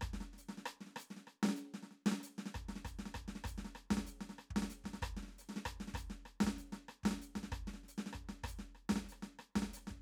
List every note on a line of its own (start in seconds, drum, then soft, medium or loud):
0.01 kick soft
0.01 cross-stick medium
0.13 snare soft
0.20 snare soft
0.33 snare soft
0.38 hi-hat pedal soft
0.48 snare soft
0.57 snare soft
0.65 cross-stick medium
0.80 snare soft
0.86 snare soft
0.91 snare soft
0.96 cross-stick medium
0.96 hi-hat pedal soft
1.10 snare soft
1.16 snare soft
1.27 cross-stick soft
1.43 snare medium
1.49 snare medium
1.56 cross-stick soft
1.56 hi-hat pedal soft
1.65 cross-stick soft
1.74 snare soft
1.82 snare soft
1.91 snare soft
2.06 snare medium
2.11 snare medium
2.18 cross-stick soft
2.18 snare soft
2.23 cross-stick soft
2.23 hi-hat pedal medium
2.38 snare soft
2.45 snare soft
2.54 kick soft
2.54 cross-stick medium
2.68 snare soft
2.75 snare soft
2.85 kick soft
2.85 cross-stick medium
2.85 hi-hat pedal soft
2.99 snare soft
3.05 snare soft
3.14 kick soft
3.14 cross-stick medium
3.28 snare soft
3.35 snare soft
3.44 kick soft
3.44 cross-stick medium
3.44 hi-hat pedal soft
3.58 snare soft
3.64 snare soft
3.75 cross-stick medium
3.90 kick soft
3.90 snare medium
3.97 snare medium
4.05 snare soft
4.05 hi-hat pedal medium
4.20 snare soft
4.29 snare soft
4.38 cross-stick soft
4.50 kick soft
4.56 snare medium
4.62 snare soft
4.70 snare soft
4.70 hi-hat pedal medium
4.84 kick soft
4.84 snare soft
4.93 snare soft
5.02 kick soft
5.02 cross-stick medium
5.16 snare soft
5.22 snare soft
5.28 snare soft
5.32 snare soft
5.38 cross-stick soft
5.38 hi-hat pedal soft
5.47 snare soft
5.49 snare soft
5.56 snare soft
5.65 kick soft
5.65 cross-stick medium
5.80 snare soft
5.87 snare soft
5.94 kick soft
5.94 cross-stick medium
5.94 hi-hat pedal soft
6.10 snare soft
6.25 cross-stick soft
6.40 kick soft
6.40 snare medium
6.46 snare medium
6.56 snare soft
6.56 hi-hat pedal soft
6.72 snare soft
6.88 cross-stick medium
7.03 kick soft
7.03 snare medium
7.11 snare soft
7.19 snare soft
7.19 hi-hat pedal soft
7.27 snare soft
7.35 kick soft
7.35 snare soft
7.43 snare soft
7.52 kick soft
7.52 cross-stick medium
7.67 snare soft
7.73 snare soft
7.83 snare soft
7.88 hi-hat pedal soft
7.98 snare soft
8.06 snare soft
8.13 kick soft
8.13 cross-stick medium
8.29 snare soft
8.43 kick soft
8.43 cross-stick medium
8.48 hi-hat pedal medium
8.59 snare soft
8.75 cross-stick soft
8.89 kick soft
8.89 snare medium
8.96 snare medium
9.04 snare soft
9.09 cross-stick soft
9.09 hi-hat pedal soft
9.22 snare soft
9.39 cross-stick medium
9.55 kick soft
9.55 snare medium
9.62 snare soft
9.69 snare soft
9.69 hi-hat pedal medium
9.77 cross-stick soft
9.87 kick soft
9.87 snare soft